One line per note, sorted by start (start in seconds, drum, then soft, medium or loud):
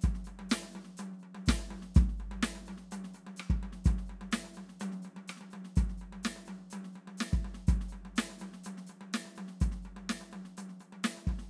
0.01 kick medium
0.01 hi-hat pedal medium
0.01 high tom medium
0.14 snare soft
0.24 hi-hat pedal soft
0.24 high tom medium
0.39 high tom medium
0.49 snare loud
0.49 hi-hat pedal medium
0.63 high tom medium
0.71 hi-hat pedal soft
0.71 high tom medium
0.84 snare soft
0.97 hi-hat pedal medium
0.97 high tom medium
1.13 snare soft
1.19 hi-hat pedal soft
1.23 high tom soft
1.35 high tom medium
1.46 kick medium
1.46 snare loud
1.46 hi-hat pedal medium
1.59 high tom medium
1.71 kick soft
1.71 high tom medium
1.82 snare soft
1.95 kick loud
1.95 hi-hat pedal medium
1.95 high tom medium
2.09 snare soft
2.18 hi-hat pedal soft
2.18 high tom soft
2.31 high tom medium
2.43 snare loud
2.43 hi-hat pedal medium
2.55 high tom medium
2.65 hi-hat pedal soft
2.65 high tom medium
2.77 snare soft
2.91 hi-hat pedal medium
2.91 high tom medium
3.04 snare soft
3.14 hi-hat pedal soft
3.14 high tom soft
3.27 high tom medium
3.36 cross-stick medium
3.36 hi-hat pedal medium
3.50 kick medium
3.50 high tom medium
3.63 high tom medium
3.72 snare soft
3.84 kick loud
3.84 hi-hat pedal medium
3.84 high tom medium
3.98 snare soft
4.06 hi-hat pedal soft
4.06 high tom medium
4.21 high tom medium
4.32 snare loud
4.32 hi-hat pedal medium
4.44 high tom medium
4.53 hi-hat pedal soft
4.53 high tom medium
4.69 snare soft
4.80 hi-hat pedal medium
4.80 high tom loud
4.92 snare soft
5.02 hi-hat pedal soft
5.02 high tom medium
5.16 high tom medium
5.28 cross-stick medium
5.28 hi-hat pedal medium
5.37 snare soft
5.41 high tom medium
5.50 hi-hat pedal soft
5.50 high tom medium
5.64 snare soft
5.76 kick medium
5.76 hi-hat pedal medium
5.76 high tom medium
5.89 snare soft
5.97 hi-hat pedal soft
5.97 high tom soft
6.12 high tom medium
6.23 snare loud
6.23 hi-hat pedal medium
6.36 high tom medium
6.45 hi-hat pedal soft
6.45 high tom medium
6.70 hi-hat pedal medium
6.70 high tom medium
6.84 snare soft
6.92 hi-hat pedal soft
6.92 high tom medium
7.07 high tom medium
7.17 snare medium
7.17 hi-hat pedal medium
7.32 kick medium
7.32 high tom medium
7.45 high tom medium
7.54 snare soft
7.67 kick loud
7.67 hi-hat pedal medium
7.67 high tom medium
7.81 snare soft
7.88 hi-hat pedal soft
7.92 high tom medium
8.05 high tom medium
8.16 snare loud
8.16 hi-hat pedal medium
8.30 high tom medium
8.39 hi-hat pedal medium
8.39 high tom medium
8.53 snare soft
8.64 hi-hat pedal medium
8.64 high tom medium
8.77 snare soft
8.87 hi-hat pedal medium
8.87 high tom soft
9.01 high tom medium
9.13 snare medium
9.13 hi-hat pedal medium
9.26 high tom medium
9.35 hi-hat pedal soft
9.35 high tom medium
9.48 snare soft
9.60 kick medium
9.60 hi-hat pedal medium
9.60 high tom medium
9.71 snare soft
9.82 hi-hat pedal soft
9.82 high tom soft
9.96 high tom medium
10.09 snare medium
10.09 hi-hat pedal medium
10.21 high tom medium
10.31 hi-hat pedal soft
10.31 high tom medium
10.45 snare soft
10.57 hi-hat pedal medium
10.57 high tom medium
10.69 snare soft
10.80 hi-hat pedal soft
10.80 high tom soft
10.92 high tom medium
11.03 snare loud
11.03 hi-hat pedal medium
11.17 high tom soft
11.25 kick medium
11.25 hi-hat pedal soft
11.29 high tom medium
11.38 snare soft